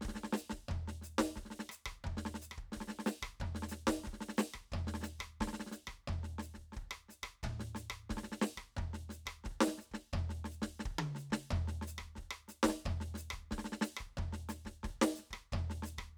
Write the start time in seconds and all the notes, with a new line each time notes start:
0.01 kick, snare
0.08 snare
0.14 snare
0.15 snare
0.23 snare
0.33 snare
0.37 hi-hat pedal
0.50 kick, snare
0.68 kick, floor tom
0.87 snare
1.01 snare, hi-hat pedal
1.18 kick, snare
1.36 kick, snare
1.45 snare
1.50 snare
1.59 snare
1.69 cross-stick, hi-hat pedal
1.86 kick, cross-stick
2.04 kick, floor tom
2.17 snare
2.25 snare
2.34 snare
2.42 hi-hat pedal
2.51 cross-stick
2.58 kick
2.72 snare
2.76 kick
2.80 snare
2.87 snare
2.99 snare
3.06 snare, hi-hat pedal
3.22 kick, cross-stick
3.40 kick, floor tom
3.55 snare
3.62 snare
3.69 snare, hi-hat pedal
3.87 kick, snare
4.04 kick, snare
4.13 snare
4.21 snare
4.29 snare
4.37 snare, hi-hat pedal
4.54 kick, cross-stick
4.72 kick, floor tom
4.87 snare
4.94 snare
5.01 snare
5.03 snare, hi-hat pedal
5.19 kick, cross-stick
5.40 kick, snare
5.47 snare
5.53 snare
5.60 snare
5.66 snare
5.71 snare, hi-hat pedal
5.87 kick, cross-stick
6.07 kick, floor tom
6.23 snare
6.38 snare, hi-hat pedal
6.54 kick, snare
6.72 snare
6.76 kick
6.91 cross-stick
7.08 snare, hi-hat pedal
7.23 kick, cross-stick
7.43 kick, floor tom
7.59 snare
7.75 snare, hi-hat pedal
7.90 kick, cross-stick
8.09 kick, snare
8.17 snare
8.23 snare
8.32 snare
8.41 snare, hi-hat pedal
8.57 kick, cross-stick
8.77 kick, floor tom
8.93 snare
9.09 snare, hi-hat pedal
9.26 kick, cross-stick
9.44 kick, snare
9.61 snare
9.67 snare
9.78 snare, hi-hat pedal
9.91 kick, snare
10.13 kick, floor tom
10.29 snare
10.44 snare
10.51 hi-hat pedal
10.62 kick, snare
10.79 snare
10.85 kick
10.98 high tom
11.15 snare, hi-hat pedal
11.30 kick, snare
11.51 kick, floor tom
11.67 snare
11.81 snare
11.87 hi-hat pedal
11.98 kick, cross-stick
12.15 kick, snare
12.31 cross-stick
12.48 snare, hi-hat pedal
12.63 kick, snare
12.69 snare
12.85 kick, floor tom
13.00 snare
13.14 snare, hi-hat pedal
13.30 kick, cross-stick
13.51 kick, snare
13.58 snare
13.64 snare
13.72 snare
13.81 snare, hi-hat pedal
13.97 kick, cross-stick
14.17 kick, floor tom
14.33 snare
14.49 snare, hi-hat pedal
14.65 kick, snare
14.83 kick, snare
15.01 snare
15.15 snare, hi-hat pedal
15.30 kick, cross-stick
15.52 kick, floor tom
15.70 snare
15.82 snare, hi-hat pedal
15.98 kick, cross-stick